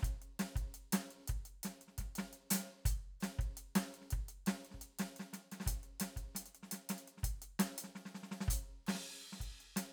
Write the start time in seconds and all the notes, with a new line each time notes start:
0.01 kick, snare
0.05 closed hi-hat
0.22 closed hi-hat
0.39 snare, closed hi-hat
0.56 kick, closed hi-hat
0.74 closed hi-hat
0.93 snare, closed hi-hat
1.11 closed hi-hat
1.20 snare
1.28 kick, closed hi-hat
1.46 closed hi-hat
1.63 snare, closed hi-hat
1.81 closed hi-hat
1.88 snare
1.98 kick, snare, closed hi-hat
2.16 snare, closed hi-hat
2.33 closed hi-hat
2.51 closed hi-hat, snare
2.54 snare
2.59 snare
2.67 snare
2.86 open hi-hat, kick
3.21 snare, closed hi-hat, hi-hat pedal
3.39 kick, closed hi-hat
3.57 closed hi-hat
3.76 snare, closed hi-hat
3.94 closed hi-hat
4.01 snare
4.11 kick, closed hi-hat
4.29 closed hi-hat
4.47 snare, closed hi-hat
4.65 closed hi-hat
4.71 kick, snare
4.81 closed hi-hat
4.99 snare, closed hi-hat
5.16 snare, closed hi-hat
5.33 snare, closed hi-hat
5.52 snare, closed hi-hat
5.60 snare
5.64 kick, snare
5.68 closed hi-hat
5.83 closed hi-hat
6.00 snare, closed hi-hat
6.17 kick, closed hi-hat
6.35 snare, closed hi-hat
6.46 closed hi-hat
6.55 closed hi-hat
6.63 snare
6.71 snare, closed hi-hat
6.89 snare, closed hi-hat
6.98 closed hi-hat
7.08 closed hi-hat
7.18 snare
7.23 kick, closed hi-hat
7.42 closed hi-hat
7.59 snare, closed hi-hat
7.78 closed hi-hat
7.84 snare
7.95 snare
8.06 snare
8.15 snare
8.23 snare
8.32 snare
8.41 snare
8.48 open hi-hat, kick
8.87 snare, crash
8.95 snare
9.33 snare
9.40 kick, closed hi-hat
9.61 closed hi-hat
9.76 snare, closed hi-hat